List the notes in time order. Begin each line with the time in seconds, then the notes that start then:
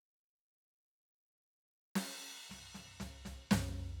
1.95 snare, crash
2.50 snare, floor tom
2.74 snare, floor tom
3.00 snare, floor tom
3.25 snare, floor tom
3.51 snare, floor tom